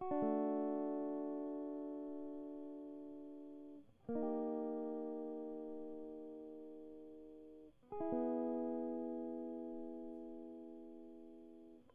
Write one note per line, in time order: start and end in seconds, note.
0.00 3.82 F#4
0.12 3.88 D4
0.21 3.82 A3
4.08 7.66 A#3
4.17 7.77 D#4
4.24 7.42 G4
7.92 11.82 G#4
8.00 11.85 E4
8.13 11.23 B3